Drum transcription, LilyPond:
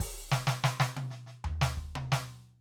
\new DrumStaff \drummode { \time 4/4 \tempo 4 = 92 <bd hho>8 sn16 sn16 sn16 sn16 tommh16 sn16 sn16 tomfh16 sn16 bd16 tommh16 sn8. | }